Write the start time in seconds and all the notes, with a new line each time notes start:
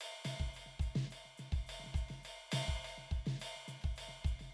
0.00 hi-hat pedal, ride bell
0.24 snare, hi-hat pedal, ride
0.40 kick, snare
0.53 hi-hat pedal, ride bell
0.66 snare
0.79 kick, hi-hat pedal, ride
0.95 snare, ride
1.10 hi-hat pedal, ride bell
1.25 snare
1.37 snare, hi-hat pedal, ride
1.52 kick, ride
1.66 hi-hat pedal, ride bell
1.80 snare
1.84 snare
1.86 snare
1.94 kick, hi-hat pedal, ride
2.08 snare, ride
2.23 hi-hat pedal, ride bell
2.51 snare, hi-hat pedal, ride
2.67 kick, snare
2.81 hi-hat pedal, ride bell
2.98 snare
3.11 kick, hi-hat pedal, ride
3.26 snare, ride
3.39 hi-hat pedal, ride bell
3.56 snare
3.68 snare, hi-hat pedal, ride
3.81 kick, ride
3.96 hi-hat pedal, ride bell
4.08 snare
4.24 kick, hi-hat pedal, ride
4.39 snare, ride